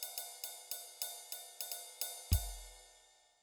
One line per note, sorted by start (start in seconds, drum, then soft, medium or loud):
0.03 ride medium
0.18 ride loud
0.44 ride medium
0.72 ride loud
1.02 ride loud
1.33 ride medium
1.61 ride medium
1.72 ride medium
2.02 ride loud
2.32 kick medium
2.32 ride loud